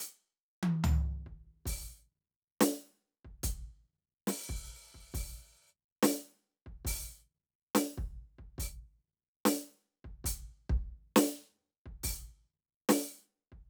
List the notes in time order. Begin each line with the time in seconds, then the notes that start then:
0.01 open hi-hat
0.64 high tom
0.85 floor tom
1.27 kick
1.66 open hi-hat, kick
2.61 open hi-hat, snare
3.25 kick
3.44 open hi-hat, kick
4.28 open hi-hat, snare
4.50 kick
4.95 kick
5.15 open hi-hat, kick
6.03 open hi-hat, snare
6.10 cross-stick
6.67 kick
6.86 open hi-hat, kick
7.76 open hi-hat, snare
7.98 kick
8.39 kick
8.59 open hi-hat, kick
9.46 open hi-hat, snare
10.05 kick
10.25 open hi-hat, kick
10.70 kick
11.17 open hi-hat, snare
11.86 kick
12.04 open hi-hat, kick
12.90 open hi-hat, snare
13.52 kick